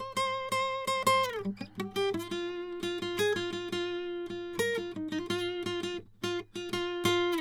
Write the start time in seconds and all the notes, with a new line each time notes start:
0.00 C5
0.18 C5
0.54 C5
0.89 C5
1.08 C5
1.81 G4
1.98 G4
2.16 F4
2.33 F4
2.85 F4
3.04 F4
3.20 G#4
3.38 F4
3.52 F4
3.74 F4
4.32 F4
4.61 A#4
4.80 F4
4.98 D#4
5.14 F4
5.32 F4
5.68 F4
5.85 F4
6.25 F4
6.57 F4
6.75 F4
7.07 F4